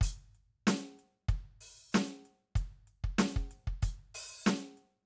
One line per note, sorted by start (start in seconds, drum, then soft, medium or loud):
0.01 closed hi-hat loud
0.01 kick medium
0.35 closed hi-hat soft
0.67 closed hi-hat loud
0.67 snare loud
0.99 closed hi-hat soft
1.29 kick medium
1.29 closed hi-hat soft
1.61 open hi-hat medium
1.92 closed hi-hat medium
1.92 snare loud
1.92 hi-hat pedal medium
2.25 closed hi-hat soft
2.56 kick medium
2.56 closed hi-hat medium
2.87 closed hi-hat soft
3.04 kick medium
3.19 snare loud
3.19 closed hi-hat loud
3.36 kick medium
3.51 closed hi-hat soft
3.67 kick medium
3.83 closed hi-hat medium
3.83 kick medium
4.15 open hi-hat loud
4.45 snare loud
4.45 closed hi-hat medium
4.45 hi-hat pedal medium
4.77 closed hi-hat soft